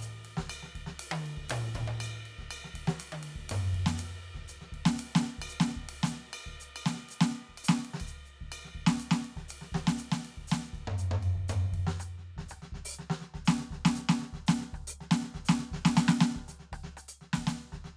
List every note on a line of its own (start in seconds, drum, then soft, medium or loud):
0.01 hi-hat pedal medium
0.01 ride medium
0.25 hi-hat pedal soft
0.25 ride medium
0.38 kick soft
0.38 snare medium
0.51 hi-hat pedal medium
0.51 ride bell loud
0.64 snare soft
0.76 kick soft
0.76 ride medium
0.88 snare medium
1.01 hi-hat pedal medium
1.01 ride loud
1.13 high tom loud
1.27 ride bell medium
1.39 kick soft
1.48 kick soft
1.48 hi-hat pedal medium
1.48 ride loud
1.52 mid tom loud
1.76 kick medium
1.76 mid tom loud
1.76 ride bell medium
1.82 kick soft
1.89 mid tom medium
2.02 hi-hat pedal medium
2.02 ride bell loud
2.27 ride soft
2.40 kick soft
2.40 snare soft
2.52 hi-hat pedal medium
2.52 ride bell loud
2.66 snare soft
2.75 kick soft
2.75 ride medium
2.89 snare loud
3.00 hi-hat pedal medium
3.00 ride loud
3.13 high tom medium
3.24 ride medium
3.37 kick soft
3.42 kick soft
3.50 floor tom loud
3.50 hi-hat pedal medium
3.50 ride loud
3.74 kick soft
3.74 ride soft
3.80 kick soft
3.87 snare loud
3.99 hi-hat pedal medium
3.99 ride loud
4.25 ride soft
4.35 kick soft
4.35 snare soft
4.49 hi-hat pedal medium
4.49 ride bell medium
4.62 snare soft
4.74 kick soft
4.74 ride soft
4.79 kick soft
4.87 snare loud
4.99 hi-hat pedal medium
4.99 ride loud
5.16 snare loud
5.22 snare soft
5.40 kick soft
5.40 ride bell loud
5.50 hi-hat pedal medium
5.61 snare loud
5.68 snare soft
5.78 kick soft
5.84 kick soft
5.90 ride loud
6.04 snare loud
6.04 hi-hat pedal medium
6.13 snare soft
6.34 ride bell loud
6.48 kick soft
6.61 hi-hat pedal medium
6.77 ride bell loud
6.87 snare loud
6.96 snare soft
7.10 hi-hat pedal loud
7.10 ride medium
7.22 snare loud
7.33 hi-hat pedal soft
7.50 kick soft
7.59 ride bell medium
7.65 hi-hat pedal loud
7.70 snare loud
7.86 ride medium
7.95 snare medium
8.01 kick medium
8.01 ride bell medium
8.08 hi-hat pedal medium
8.27 hi-hat pedal soft
8.42 kick soft
8.53 hi-hat pedal medium
8.53 ride bell loud
8.66 snare soft
8.76 kick soft
8.76 ride soft
8.82 kick soft
8.88 snare loud
9.01 hi-hat pedal medium
9.01 ride medium
9.12 snare loud
9.26 ride medium
9.38 kick soft
9.38 snare soft
9.43 kick soft
9.50 hi-hat pedal medium
9.50 ride loud
9.62 snare soft
9.73 kick soft
9.73 snare medium
9.79 kick soft
9.88 snare loud
9.99 hi-hat pedal medium
9.99 ride medium
10.13 snare loud
10.26 ride medium
10.39 kick soft
10.47 kick soft
10.47 hi-hat pedal medium
10.53 snare loud
10.53 ride bell medium
10.75 kick soft
10.75 ride bell soft
10.81 kick soft
10.89 floor tom loud
10.99 hi-hat pedal medium
10.99 ride bell soft
11.12 floor tom loud
11.20 hi-hat pedal soft
11.20 ride bell medium
11.37 kick soft
11.50 floor tom loud
11.50 hi-hat pedal medium
11.50 ride bell medium
11.62 floor tom soft
11.74 kick medium
11.74 ride medium
11.80 kick soft
11.88 snare medium
12.01 cross-stick medium
12.01 hi-hat pedal medium
12.19 snare soft
12.38 kick soft
12.38 snare medium
12.44 kick soft
12.50 cross-stick medium
12.50 hi-hat pedal medium
12.63 snare soft
12.74 kick soft
12.74 snare soft
12.79 kick soft
12.86 open hi-hat loud
12.95 hi-hat pedal medium
13.00 snare soft
13.11 snare medium
13.22 snare soft
13.35 kick soft
13.35 snare soft
13.43 kick soft
13.43 hi-hat pedal medium
13.49 snare loud
13.61 snare soft
13.72 kick soft
13.72 snare soft
13.78 kick soft
13.86 snare loud
13.96 snare soft
13.96 hi-hat pedal medium
14.10 snare loud
14.23 snare soft
14.34 kick soft
14.34 snare soft
14.48 snare loud
14.48 hi-hat pedal medium
14.61 snare soft
14.74 kick soft
14.74 cross-stick soft
14.80 kick soft
14.89 open hi-hat loud
14.89 hi-hat pedal medium
15.02 snare soft
15.12 snare loud
15.24 snare soft
15.36 kick soft
15.36 snare soft
15.46 snare loud
15.46 hi-hat pedal medium
15.60 snare soft
15.73 kick soft
15.73 snare medium
15.79 kick soft
15.86 snare loud
15.97 snare loud
15.97 hi-hat pedal medium
16.09 snare loud
16.22 snare loud
16.36 kick soft
16.36 snare soft
16.49 snare soft
16.49 hi-hat pedal medium
16.61 snare soft
16.74 kick soft
16.74 cross-stick medium
16.79 kick soft
16.85 snare soft
16.98 cross-stick medium
16.98 hi-hat pedal medium
17.09 closed hi-hat medium
17.22 snare soft
17.34 snare loud
17.39 kick soft
17.48 snare loud
17.48 hi-hat pedal medium
17.62 snare soft
17.74 kick soft
17.74 snare soft
17.86 snare soft